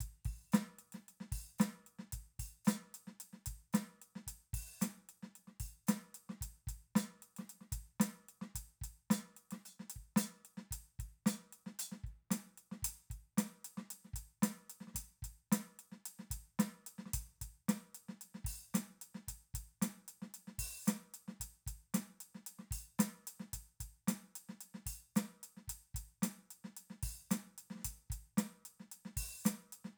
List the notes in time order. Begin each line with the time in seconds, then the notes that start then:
0.00 kick, closed hi-hat
0.25 kick, open hi-hat
0.52 snare, closed hi-hat, hi-hat pedal
0.78 closed hi-hat
0.92 snare, closed hi-hat
1.08 closed hi-hat
1.20 snare
1.32 kick, open hi-hat
1.58 snare, closed hi-hat, hi-hat pedal
1.86 closed hi-hat
1.99 snare
2.12 kick, closed hi-hat
2.39 kick, open hi-hat
2.65 closed hi-hat, snare, hi-hat pedal
2.94 closed hi-hat
3.07 snare
3.20 closed hi-hat
3.33 snare
3.46 kick, closed hi-hat
3.73 snare, closed hi-hat, hi-hat pedal
4.01 closed hi-hat
4.15 snare
4.27 kick, closed hi-hat
4.53 kick, open hi-hat
4.81 snare, closed hi-hat, hi-hat pedal
5.09 closed hi-hat
5.22 snare
5.35 closed hi-hat
5.47 snare
5.60 kick, open hi-hat
5.87 snare, closed hi-hat, hi-hat pedal
6.14 closed hi-hat
6.29 snare
6.41 kick, closed hi-hat
6.67 kick, closed hi-hat
6.95 closed hi-hat, snare
7.22 closed hi-hat
7.36 snare, closed hi-hat
7.49 closed hi-hat
7.61 snare
7.72 kick, closed hi-hat
8.00 snare, closed hi-hat
8.28 closed hi-hat
8.41 snare
8.55 kick, closed hi-hat
8.81 kick, closed hi-hat
9.10 closed hi-hat, snare
9.36 closed hi-hat
9.51 snare, closed hi-hat
9.65 closed hi-hat
9.79 snare
9.90 closed hi-hat
9.96 kick
10.16 closed hi-hat, snare
10.45 closed hi-hat
10.57 snare
10.71 kick, closed hi-hat
10.99 kick, closed hi-hat
11.26 closed hi-hat, snare
11.52 closed hi-hat
11.66 snare
11.79 closed hi-hat
11.92 snare
12.03 kick, closed hi-hat
12.30 snare, closed hi-hat
12.57 closed hi-hat
12.71 snare
12.82 kick, closed hi-hat
13.10 kick, closed hi-hat
13.37 snare, closed hi-hat
13.64 closed hi-hat
13.77 snare
13.90 closed hi-hat
14.04 snare
14.13 kick, closed hi-hat
14.42 snare, closed hi-hat
14.70 closed hi-hat
14.80 snare
14.87 snare
14.94 kick, snare, closed hi-hat
15.22 kick, closed hi-hat
15.52 snare, closed hi-hat
15.79 closed hi-hat
15.92 snare
16.05 closed hi-hat
16.19 snare
16.30 kick, closed hi-hat
16.59 snare, closed hi-hat
16.86 closed hi-hat
16.98 snare
17.05 snare
17.13 kick, closed hi-hat
17.41 kick, closed hi-hat
17.68 snare, closed hi-hat
17.94 closed hi-hat
18.08 snare
18.21 closed hi-hat
18.34 snare
18.44 kick, open hi-hat
18.74 snare, closed hi-hat, hi-hat pedal
19.01 closed hi-hat
19.14 snare
19.28 kick, closed hi-hat
19.54 kick, closed hi-hat
19.81 snare, closed hi-hat
20.08 closed hi-hat
20.22 snare
20.34 closed hi-hat
20.47 snare
20.58 kick, open hi-hat
20.85 snare, closed hi-hat, hi-hat pedal
21.14 closed hi-hat
21.28 snare
21.40 kick, closed hi-hat
21.66 kick, closed hi-hat
21.94 snare, closed hi-hat
22.20 closed hi-hat
22.34 snare
22.46 closed hi-hat
22.59 snare
22.71 kick, open hi-hat
22.98 snare, closed hi-hat, hi-hat pedal
23.27 closed hi-hat
23.40 snare
23.53 kick, closed hi-hat
23.80 kick, closed hi-hat
24.07 snare, closed hi-hat
24.35 closed hi-hat
24.49 snare
24.60 closed hi-hat
24.74 snare
24.86 kick, open hi-hat
25.15 snare, closed hi-hat, hi-hat pedal
25.43 closed hi-hat
25.57 snare
25.68 kick, closed hi-hat
25.94 kick, closed hi-hat
26.22 snare, closed hi-hat
26.50 closed hi-hat
26.64 snare
26.76 closed hi-hat
26.90 snare
27.03 kick, open hi-hat
27.30 snare, closed hi-hat, hi-hat pedal
27.58 closed hi-hat
27.70 snare
27.75 snare
27.79 snare
27.84 kick, closed hi-hat
28.10 kick, closed hi-hat
28.37 snare, closed hi-hat
28.65 closed hi-hat
28.80 snare
28.91 closed hi-hat
29.05 snare
29.17 kick, open hi-hat
29.44 snare, closed hi-hat, hi-hat pedal
29.72 closed hi-hat
29.84 snare